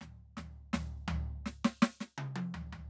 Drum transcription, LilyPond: \new DrumStaff \drummode { \time 4/4 \tempo 4 = 83 <sn tomfh>8 <sn tomfh>8 <sn tomfh>8 tomfh8 sn16 sn16 sn16 sn16 toml16 <tommh hho>16 tomfh16 tomfh16 | }